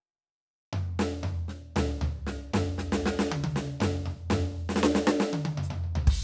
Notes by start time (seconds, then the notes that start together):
0.73 mid tom
0.99 snare
1.23 mid tom
1.48 snare
1.76 snare, floor tom
2.01 floor tom
2.27 snare
2.53 snare, mid tom
2.78 snare
2.92 snare
3.06 snare
3.19 snare
3.32 high tom
3.44 high tom
3.49 hi-hat pedal
3.56 snare
3.80 snare, mid tom
4.06 mid tom
4.30 snare, mid tom
4.69 snare
4.76 snare
4.83 snare
4.95 snare
5.07 snare
5.20 snare
5.33 high tom
5.45 high tom
5.57 mid tom
5.63 hi-hat pedal
5.70 mid tom
5.84 floor tom
5.95 floor tom
6.07 kick, crash